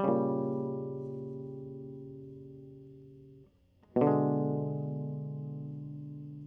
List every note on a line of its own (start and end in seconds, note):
0.00 3.50 G3
0.05 3.46 C#3
0.09 3.50 A#2
3.98 6.47 B2
4.02 6.47 D3
4.07 6.47 G#3